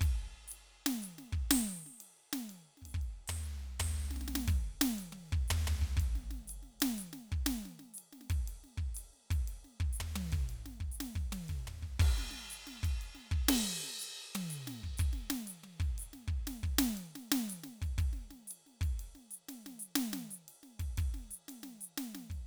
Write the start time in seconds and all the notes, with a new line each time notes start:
0.01 kick, ride
0.21 kick
0.48 hi-hat pedal
0.52 ride
0.86 snare, ride
1.02 hi-hat pedal, ride
1.19 snare
1.33 kick
1.51 open hi-hat, snare
1.86 snare
2.01 ride
2.33 snare, ride
2.50 ride
2.77 snare
2.82 kick, ride
2.86 snare, hi-hat pedal
2.94 kick
3.02 ride
3.28 open hi-hat, floor tom
3.43 hi-hat pedal
3.80 open hi-hat, floor tom
4.11 snare
4.16 snare
4.21 snare
4.28 snare
4.36 snare
4.48 kick, ride
4.81 snare, ride
4.99 hi-hat pedal, ride
5.12 high tom
5.33 kick
5.48 floor tom, hi-hat pedal
5.67 floor tom
5.82 kick
5.97 kick, ride
6.16 snare
6.31 snare
6.48 hi-hat pedal, ride
6.63 snare
6.81 snare, ride
6.98 hi-hat pedal, ride
7.13 snare
7.32 kick
7.46 snare, ride
7.66 snare
7.79 snare
7.94 hi-hat pedal
7.98 ride
8.13 snare
8.21 snare
8.30 kick, ride
8.48 ride
8.64 snare
8.78 kick
8.95 hi-hat pedal, ride
9.13 snare
9.31 kick, ride
9.48 ride
9.65 snare
9.80 kick
9.93 hi-hat pedal
10.00 floor tom
10.16 high tom
10.32 kick, ride
10.38 hi-hat pedal
10.49 ride
10.66 snare
10.80 kick
10.92 hi-hat pedal
11.01 snare, ride
11.16 kick
11.32 high tom, ride
11.49 kick, ride
11.67 floor tom
11.83 kick
12.00 kick, crash
12.18 snare
12.31 snare
12.50 hi-hat pedal, ride
12.67 snare
12.83 kick, ride
13.01 ride
13.15 snare
13.32 kick
13.49 snare, crash
13.84 snare
13.99 hi-hat pedal, ride
14.35 high tom, ride
14.50 hi-hat pedal, ride
14.67 snare
14.84 kick
14.97 kick, hi-hat pedal, ride
15.13 snare
15.30 snare
15.47 hi-hat pedal, ride
15.64 high tom
15.80 kick, ride
15.98 hi-hat pedal, ride
16.13 snare
16.28 kick
16.47 snare, ride
16.63 kick
16.79 snare, ride
16.97 ride
17.16 snare
17.32 snare
17.49 hi-hat pedal, ride
17.64 snare
17.82 kick, ride
17.98 kick, ride
18.13 snare
18.31 snare
18.48 hi-hat pedal, ride
18.67 snare
18.81 kick, ride
19.00 ride
19.15 snare
19.31 hi-hat pedal
19.49 snare, ride
19.66 snare
19.79 hi-hat pedal
19.96 snare, ride
20.13 snare
20.31 hi-hat pedal
20.48 hi-hat pedal, ride
20.63 snare
20.80 kick, ride
20.98 kick, ride
21.14 snare
21.31 hi-hat pedal
21.48 snare, ride
21.63 snare
21.81 hi-hat pedal
21.98 snare, ride
22.15 snare
22.30 kick, ride